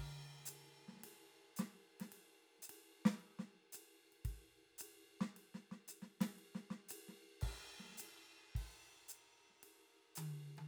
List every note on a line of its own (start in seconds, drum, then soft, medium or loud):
0.47 hi-hat pedal medium
0.47 ride soft
0.89 snare soft
0.94 snare soft
0.97 snare soft
1.01 snare soft
1.03 snare soft
1.03 ride medium
1.09 snare soft
1.57 snare medium
1.57 hi-hat pedal medium
1.57 ride soft
2.01 snare soft
2.01 ride soft
2.13 ride soft
2.60 snare soft
2.60 hi-hat pedal medium
2.70 ride medium
3.06 snare medium
3.06 ride soft
3.21 ride soft
3.40 snare soft
3.73 hi-hat pedal medium
3.73 ride medium
4.13 ride soft
4.26 kick soft
4.26 ride soft
4.79 hi-hat pedal medium
4.79 ride medium
5.22 snare medium
5.37 ride soft
5.55 snare soft
5.72 snare soft
5.89 hi-hat pedal medium
5.89 ride soft
6.03 snare soft
6.22 snare medium
6.22 ride medium
6.40 ride soft
6.56 snare soft
6.71 snare soft
6.90 hi-hat pedal medium
6.90 ride medium
7.09 snare soft
7.42 kick soft
7.42 crash medium
7.80 snare soft
7.86 snare soft
7.89 snare soft
7.93 snare soft
7.98 snare soft
7.98 hi-hat pedal medium
7.98 ride medium
8.56 kick soft
8.56 ride soft
8.56 crash soft
9.09 hi-hat pedal medium
9.09 ride soft
9.51 snare soft
9.64 ride soft
10.16 hi-hat pedal medium
10.16 high tom medium
10.16 ride medium
10.58 high tom soft
10.58 ride soft